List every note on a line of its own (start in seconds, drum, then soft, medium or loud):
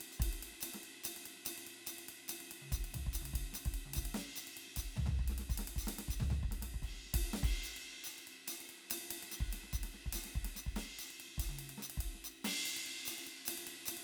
0.01 ride medium
0.12 percussion medium
0.20 kick soft
0.20 ride loud
0.33 ride medium
0.43 ride medium
0.52 snare soft
0.61 hi-hat pedal medium
0.61 ride loud
0.74 snare soft
0.74 ride medium
0.83 ride medium
1.04 hi-hat pedal medium
1.04 ride loud
1.17 ride medium
1.24 hi-hat pedal soft
1.24 ride medium
1.36 snare soft
1.46 hi-hat pedal medium
1.46 ride loud
1.58 ride medium
1.67 ride medium
1.77 snare soft
1.87 hi-hat pedal medium
1.87 ride medium
1.99 ride medium
2.09 ride medium
2.28 hi-hat pedal medium
2.28 ride loud
2.41 ride medium
2.51 ride medium
2.62 high tom soft
2.72 kick soft
2.72 hi-hat pedal loud
2.72 ride medium
2.85 ride medium
2.91 floor tom medium
2.91 hi-hat pedal soft
2.91 ride medium
3.07 kick soft
3.13 hi-hat pedal medium
3.13 ride medium
3.22 high tom soft
3.26 ride medium
3.32 kick soft
3.32 hi-hat pedal soft
3.32 ride medium
3.53 snare soft
3.53 hi-hat pedal medium
3.53 ride medium
3.65 kick soft
3.65 ride medium
3.74 ride medium
3.86 high tom soft
3.94 kick soft
3.94 hi-hat pedal medium
3.94 ride medium
4.06 ride medium
4.15 snare medium
4.15 ride medium
4.36 hi-hat pedal medium
4.36 ride medium
4.47 ride medium
4.57 ride medium
4.67 snare soft
4.77 kick soft
4.77 hi-hat pedal medium
4.77 ride medium
4.96 snare soft
4.96 floor tom medium
5.06 snare soft
5.06 floor tom medium
5.19 kick soft
5.28 snare soft
5.28 ride medium
5.38 snare soft
5.38 ride medium
5.50 kick soft
5.50 hi-hat pedal medium
5.58 snare medium
5.58 ride medium
5.68 ride medium
5.76 kick soft
5.76 hi-hat pedal medium
5.87 snare medium
5.87 ride medium
5.99 snare medium
5.99 ride medium
6.08 kick soft
6.08 hi-hat pedal medium
6.20 snare medium
6.20 floor tom medium
6.30 snare medium
6.30 floor tom medium
6.43 kick soft
6.51 snare soft
6.51 ride medium
6.62 snare soft
6.62 ride medium
6.74 kick soft
6.82 kick soft
6.82 ride medium
6.93 snare soft
7.06 snare soft
7.14 kick medium
7.14 ride loud
7.24 ride soft
7.34 snare medium
7.43 kick medium
7.43 ride medium
7.60 snare soft
7.64 hi-hat pedal medium
7.64 ride medium
7.77 ride medium
7.98 snare soft
8.04 hi-hat pedal medium
8.04 ride medium
8.18 ride medium
8.27 ride medium
8.48 hi-hat pedal loud
8.48 ride loud
8.61 ride medium
8.69 ride medium
8.80 snare soft
8.90 hi-hat pedal loud
8.90 ride loud
9.10 hi-hat pedal soft
9.10 ride loud
9.23 snare soft
9.23 ride medium
9.32 snare soft
9.32 hi-hat pedal medium
9.32 ride medium
9.40 kick soft
9.50 snare soft
9.50 hi-hat pedal soft
9.50 ride medium
9.64 snare soft
9.73 kick soft
9.73 hi-hat pedal medium
9.83 snare soft
9.83 ride medium
9.91 snare soft
9.91 hi-hat pedal soft
9.91 ride soft
10.06 kick soft
10.13 snare soft
10.13 hi-hat pedal loud
10.13 ride loud
10.24 snare soft
10.24 ride medium
10.34 kick soft
10.34 hi-hat pedal soft
10.45 snare soft
10.45 ride medium
10.56 snare soft
10.56 hi-hat pedal medium
10.67 kick soft
10.76 snare medium
10.76 ride medium
10.99 hi-hat pedal medium
10.99 ride medium
11.11 ride medium
11.19 hi-hat pedal soft
11.19 ride medium
11.28 snare soft
11.38 kick soft
11.38 hi-hat pedal medium
11.38 ride medium
11.49 high tom medium
11.59 hi-hat pedal soft
11.59 ride medium
11.70 ride medium
11.78 snare medium
11.83 hi-hat pedal loud
11.90 ride medium
11.98 kick soft
11.98 ride medium
12.15 snare soft
12.25 hi-hat pedal loud
12.45 snare medium
12.45 hi-hat pedal soft
12.45 ride loud
12.66 hi-hat pedal medium
12.66 ride medium
12.77 ride medium
12.86 hi-hat pedal soft
12.86 ride medium
12.94 snare soft
13.06 hi-hat pedal loud
13.06 ride loud
13.18 ride medium
13.24 hi-hat pedal soft
13.24 ride medium
13.46 hi-hat pedal medium
13.46 ride loud
13.58 ride medium
13.64 hi-hat pedal soft
13.64 ride medium
13.86 hi-hat pedal loud
13.86 ride loud
13.97 ride medium